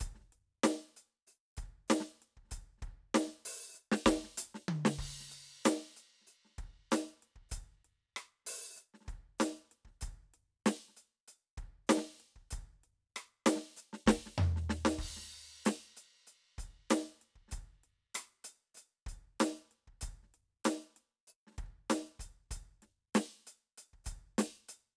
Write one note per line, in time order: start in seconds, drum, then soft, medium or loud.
0.01 closed hi-hat medium
0.01 kick medium
0.08 kick soft
0.12 kick soft
0.12 snare soft
0.20 snare soft
0.33 closed hi-hat soft
0.64 closed hi-hat medium
0.64 snare loud
0.97 closed hi-hat soft
1.28 open hi-hat soft
1.28 hi-hat pedal soft
1.58 closed hi-hat soft
1.58 kick soft
1.66 kick soft
1.89 closed hi-hat medium
1.89 snare loud
1.89 hi-hat pedal soft
2.01 snare soft
2.23 closed hi-hat soft
2.38 kick soft
2.45 snare soft
2.48 snare soft
2.51 closed hi-hat medium
2.51 kick soft
2.51 snare soft
2.79 snare soft
2.83 kick soft
2.83 closed hi-hat soft
3.15 closed hi-hat medium
3.15 snare loud
3.28 snare soft
3.46 open hi-hat medium
3.75 hi-hat pedal soft
3.92 snare medium
4.07 kick soft
4.07 snare loud
4.24 snare soft
4.38 closed hi-hat loud
4.55 snare soft
4.69 high tom loud
4.86 snare loud
4.99 kick soft
4.99 crash medium
5.21 snare soft
5.26 snare soft
5.29 closed hi-hat soft
5.29 snare soft
5.33 snare soft
5.66 closed hi-hat medium
5.66 snare loud
5.97 closed hi-hat soft
6.22 snare soft
6.28 open hi-hat soft
6.46 snare soft
6.51 snare soft
6.59 kick soft
6.59 closed hi-hat soft
6.92 open hi-hat medium
6.92 snare loud
6.92 hi-hat pedal medium
7.23 closed hi-hat soft
7.36 kick soft
7.50 closed hi-hat medium
7.50 kick soft
7.50 hi-hat pedal soft
7.58 kick soft
7.85 closed hi-hat soft
8.17 closed hi-hat medium
8.17 cross-stick medium
8.46 open hi-hat loud
8.46 snare soft
8.77 closed hi-hat soft
8.77 hi-hat pedal soft
8.95 snare soft
9.01 snare soft
9.06 kick soft
9.06 snare soft
9.10 snare soft
9.10 closed hi-hat soft
9.39 closed hi-hat medium
9.39 snare medium
9.39 hi-hat pedal soft
9.72 closed hi-hat soft
9.86 kick soft
9.86 snare soft
10.02 closed hi-hat medium
10.02 kick soft
10.35 closed hi-hat soft
10.67 closed hi-hat medium
10.67 snare loud
10.89 snare soft
10.97 closed hi-hat soft
11.29 closed hi-hat soft
11.58 kick soft
11.58 closed hi-hat soft
11.88 closed hi-hat medium
11.88 snare loud
11.88 hi-hat pedal soft
11.98 snare soft
12.21 closed hi-hat soft
12.37 kick soft
12.51 closed hi-hat medium
12.51 kick soft
12.62 kick soft
12.84 closed hi-hat soft
13.17 closed hi-hat medium
13.17 cross-stick medium
13.47 closed hi-hat medium
13.47 snare loud
13.57 snare soft
13.77 hi-hat pedal medium
13.94 snare soft
14.07 kick soft
14.07 snare loud
14.13 kick soft
14.16 kick soft
14.27 snare soft
14.39 floor tom loud
14.57 snare soft
14.70 snare medium
14.86 snare loud
14.99 kick soft
14.99 crash medium
15.05 kick soft
15.17 snare soft
15.23 snare soft
15.26 snare soft
15.31 snare soft
15.36 closed hi-hat soft
15.66 closed hi-hat medium
15.66 snare loud
15.98 closed hi-hat soft
16.28 closed hi-hat soft
16.59 closed hi-hat soft
16.59 kick soft
16.91 closed hi-hat medium
16.91 snare loud
17.22 closed hi-hat soft
17.36 kick soft
17.49 closed hi-hat medium
17.49 snare soft
17.52 kick soft
17.52 snare soft
17.84 closed hi-hat soft
18.15 closed hi-hat loud
18.15 cross-stick medium
18.45 closed hi-hat medium
18.75 closed hi-hat soft
18.75 hi-hat pedal soft
19.07 closed hi-hat soft
19.07 kick soft
19.40 closed hi-hat medium
19.40 snare loud
19.72 closed hi-hat soft
19.88 kick soft
20.02 closed hi-hat medium
20.02 kick soft
20.24 snare soft
20.35 closed hi-hat soft
20.65 closed hi-hat medium
20.65 snare medium
20.97 closed hi-hat soft
21.28 open hi-hat soft
21.48 snare soft
21.51 snare soft
21.54 snare soft
21.59 kick soft
21.59 closed hi-hat soft
21.67 kick soft
21.90 closed hi-hat medium
21.90 snare medium
22.20 closed hi-hat medium
22.20 kick soft
22.52 closed hi-hat medium
22.52 kick soft
22.83 snare soft
22.83 closed hi-hat soft
23.15 closed hi-hat medium
23.15 snare loud
23.48 closed hi-hat soft
23.78 closed hi-hat soft
23.94 kick soft
24.05 closed hi-hat medium
24.05 kick soft
24.05 hi-hat pedal soft
24.39 closed hi-hat medium
24.39 snare loud
24.69 open hi-hat medium